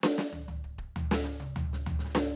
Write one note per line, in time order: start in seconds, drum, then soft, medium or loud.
0.00 snare soft
0.03 snare loud
0.18 snare loud
0.33 floor tom medium
0.48 floor tom medium
0.64 kick soft
0.78 kick medium
0.96 floor tom loud
1.07 hi-hat pedal soft
1.11 snare loud
1.24 snare soft
1.40 high tom medium
1.56 floor tom loud
1.73 snare soft
1.86 floor tom loud
1.99 snare soft
2.04 snare soft
2.15 snare loud